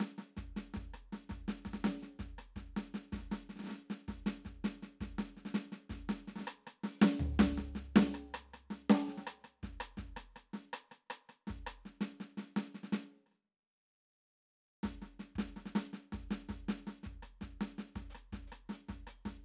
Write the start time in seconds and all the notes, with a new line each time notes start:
0.01 snare
0.18 snare
0.37 kick, snare
0.56 snare, hi-hat pedal
0.74 kick, snare
0.94 cross-stick
1.12 snare
1.29 kick, snare
1.48 snare, hi-hat pedal
1.65 kick, snare
1.73 snare
1.84 snare
2.02 snare
2.19 kick, snare
2.38 cross-stick, hi-hat pedal
2.56 kick, snare
2.76 snare
2.94 snare
3.12 kick, snare
3.16 snare
3.31 snare, hi-hat pedal
3.49 snare
3.56 snare
3.59 snare
3.64 snare
3.67 snare
3.69 snare
3.90 snare
4.08 kick, snare
4.26 snare, hi-hat pedal
4.45 kick, snare
4.64 snare, hi-hat pedal
4.82 snare
5.01 kick, snare
5.18 snare
5.23 hi-hat pedal
5.37 snare
5.45 snare
5.54 snare
5.72 snare, hi-hat pedal
5.89 kick, snare
5.91 snare
6.09 snare, hi-hat pedal
6.27 snare
6.36 snare
6.38 snare
6.40 snare
6.47 cross-stick
6.67 cross-stick
6.84 snare, hi-hat pedal
7.01 snare
7.19 floor tom
7.35 hi-hat pedal
7.39 kick, snare
7.58 snare
7.62 hi-hat pedal
7.75 snare
7.96 snare
8.14 cross-stick
8.34 cross-stick
8.53 cross-stick
8.70 snare, hi-hat pedal
8.90 snare
9.08 snare
9.17 snare
9.27 cross-stick
9.44 cross-stick
9.63 kick, snare
9.80 cross-stick, hi-hat pedal
9.97 kick, snare
10.16 cross-stick
10.36 cross-stick
10.53 snare
10.73 cross-stick
10.91 cross-stick
11.10 cross-stick
11.29 cross-stick, hi-hat pedal
11.47 kick, snare
11.67 cross-stick, hi-hat pedal
11.85 snare
12.01 snare
12.20 snare
12.37 snare
12.56 snare
12.74 snare
12.83 snare
12.92 snare
13.26 cross-stick
13.31 cross-stick, snare
14.83 kick, snare
15.02 snare
15.19 snare
15.35 kick, snare
15.56 snare
15.66 snare
15.75 snare
15.93 snare
15.97 hi-hat pedal
16.12 kick, snare
16.31 snare, hi-hat pedal
16.49 kick, snare
16.68 snare
16.87 snare
17.03 kick, snare
17.22 cross-stick, hi-hat pedal
17.41 kick, snare
17.61 snare
17.78 snare, hi-hat pedal
17.95 kick, snare
18.10 hi-hat pedal
18.15 cross-stick
18.32 kick, snare
18.47 hi-hat pedal
18.52 cross-stick
18.69 snare, hi-hat pedal
18.89 kick, snare
19.07 cross-stick, hi-hat pedal
19.25 kick, snare